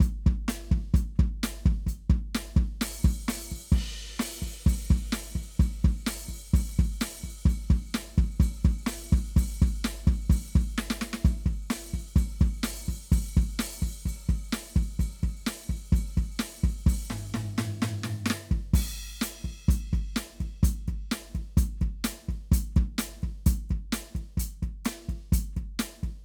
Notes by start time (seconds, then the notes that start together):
0.01 closed hi-hat, kick
0.24 kick, snare
0.49 closed hi-hat, snare
0.72 kick
0.95 closed hi-hat, kick
1.16 kick, snare
1.44 closed hi-hat, snare
1.66 kick
1.87 closed hi-hat, kick
2.10 kick
2.35 closed hi-hat, snare
2.49 snare
2.57 kick
2.82 open hi-hat, snare
2.95 snare
3.05 kick
3.29 open hi-hat, snare
3.37 snare
3.52 kick
3.72 kick, crash
4.20 open hi-hat, snare
4.43 kick
4.67 open hi-hat, kick
4.91 kick
5.13 open hi-hat, snare
5.36 kick
5.60 open hi-hat, kick
5.85 kick
6.07 open hi-hat, snare
6.29 kick
6.54 open hi-hat, kick
6.70 snare
6.79 kick
7.01 open hi-hat, snare
7.24 kick
7.46 open hi-hat, kick
7.71 kick
7.95 open hi-hat, snare
8.18 kick
8.40 open hi-hat, kick
8.65 kick
8.87 open hi-hat, snare
9.13 kick
9.37 open hi-hat, kick
9.62 kick
9.85 open hi-hat, snare
10.08 kick
10.30 open hi-hat, kick
10.48 snare
10.56 kick
10.78 snare
10.91 snare
11.02 snare
11.14 snare
11.25 open hi-hat, kick
11.46 kick
11.71 open hi-hat, snare
11.86 snare
11.94 kick
12.17 open hi-hat, kick
12.42 kick
12.64 open hi-hat, snare
12.89 kick
13.12 open hi-hat, kick
13.37 kick
13.60 open hi-hat, snare
13.83 kick
14.06 open hi-hat, kick
14.16 snare
14.29 kick
14.53 open hi-hat, snare
14.77 kick
15.00 open hi-hat, kick
15.24 kick
15.42 kick
15.47 open hi-hat, snare
15.70 kick
15.93 open hi-hat, kick
16.18 kick
16.40 open hi-hat, snare
16.64 kick
16.87 open hi-hat, kick
17.11 kick, snare, floor tom
17.34 snare, floor tom
17.58 snare, floor tom
17.83 snare, floor tom
18.04 snare, floor tom
18.26 snare, hi-hat pedal
18.31 snare
18.52 kick
18.74 open hi-hat, kick, crash
19.17 hi-hat pedal
19.22 closed hi-hat, snare
19.45 kick, closed hi-hat
19.69 closed hi-hat, kick
19.92 kick, snare, closed hi-hat
20.17 closed hi-hat, snare
20.30 snare
20.41 kick, closed hi-hat
20.64 closed hi-hat, kick
20.88 kick, closed hi-hat
21.12 closed hi-hat, snare
21.35 kick, closed hi-hat
21.58 closed hi-hat, kick
21.78 snare, closed hi-hat
21.82 kick
22.05 closed hi-hat, snare
22.13 snare
22.21 snare
22.29 kick, closed hi-hat
22.52 closed hi-hat, kick
22.72 snare
22.77 kick, closed hi-hat
22.99 closed hi-hat, snare
23.23 kick, closed hi-hat
23.47 closed hi-hat, kick
23.70 kick, closed hi-hat
23.93 closed hi-hat, snare
24.16 kick, closed hi-hat
24.38 closed hi-hat, kick
24.63 kick, closed hi-hat
24.85 closed hi-hat, snare
25.09 kick, closed hi-hat
25.33 closed hi-hat, kick
25.53 kick, snare, closed hi-hat
25.80 closed hi-hat, snare
26.04 kick, closed hi-hat